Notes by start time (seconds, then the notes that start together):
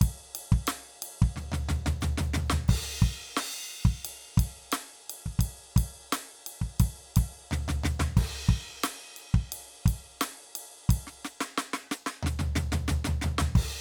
0.01 kick, ride
0.35 ride
0.52 kick
0.67 snare, ride
1.03 ride
1.22 kick
1.36 snare, floor tom
1.52 snare, floor tom
1.69 snare, floor tom
1.86 snare, floor tom
2.01 snare, floor tom, hi-hat pedal
2.18 snare, floor tom
2.23 hi-hat pedal
2.34 snare, floor tom
2.46 hi-hat pedal
2.50 snare, floor tom
2.68 kick, crash, ride
3.02 kick, snare
3.37 snare, crash
3.85 kick, snare
4.05 ride
4.38 kick, ride
4.72 snare, ride
5.10 ride
5.26 kick
5.39 kick, ride
5.77 kick, ride
6.13 snare, ride
6.47 ride
6.62 kick
6.80 kick, ride
7.16 kick, ride
7.51 snare, floor tom
7.68 snare, floor tom
7.84 snare, floor tom
7.92 hi-hat pedal
8.00 snare, floor tom
8.17 kick, crash, ride
8.49 kick, snare
8.84 snare, ride
9.17 ride
9.34 kick
9.52 ride
9.86 kick, ride
10.21 snare, ride
10.56 ride
10.89 kick, ride
11.07 snare
11.25 snare
11.41 snare
11.58 snare
11.74 snare
11.92 snare
12.07 snare
12.23 snare, floor tom
12.39 snare, floor tom
12.56 snare, floor tom
12.72 snare, floor tom
12.88 snare, floor tom, hi-hat pedal
13.05 snare, floor tom
13.22 snare, floor tom
13.39 snare, floor tom
13.56 kick, crash, ride